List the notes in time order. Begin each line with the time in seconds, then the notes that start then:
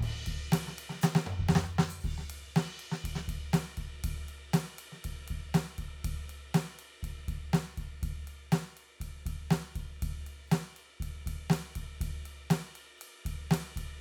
0.01 kick, ride
0.27 kick, ride
0.48 kick
0.53 snare, ride
0.68 snare
0.79 ride
0.90 snare
0.95 snare
1.02 snare, hi-hat pedal
1.15 snare
1.27 floor tom
1.40 kick
1.49 snare
1.56 snare
1.64 cross-stick
1.79 snare
1.89 open hi-hat
2.04 kick, crash
2.18 snare
2.30 ride
2.56 snare, ride
2.80 ride
2.92 snare
3.05 kick, ride
3.16 snare
3.28 kick, ride
3.54 snare, ride
3.78 kick, ride
4.04 kick, ride
4.29 ride
4.54 snare, ride
4.79 ride
4.92 snare
5.05 kick, ride
5.28 kick, ride
5.55 snare, ride
5.79 kick, ride
6.05 kick, ride
6.30 ride
6.55 snare, ride
6.79 ride
7.03 kick, ride
7.28 kick, ride
7.54 snare, ride
7.78 kick, ride
8.03 kick, ride
8.28 ride
8.53 snare, ride
8.77 ride
9.01 kick, ride
9.26 kick, ride
9.51 snare, ride
9.76 kick, ride
10.03 kick, ride
10.27 ride
10.47 hi-hat pedal
10.52 snare, ride
10.77 ride
11.01 kick, ride
11.27 kick, ride
11.50 snare, hi-hat pedal, ride
11.76 kick, ride
12.01 kick, ride
12.26 ride
12.51 snare, ride
12.76 ride
12.98 hi-hat pedal, ride
13.26 kick, ride
13.51 snare, hi-hat pedal, ride
13.77 kick, ride